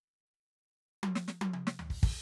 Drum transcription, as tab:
CC |---------------x|x---------------|
SD |---------oo--o--|----------------|
T1 |--------o--o----|----------------|
T2 |------------o---|----------------|
FT |--------------o-|----------------|
BD |---------------o|o---------------|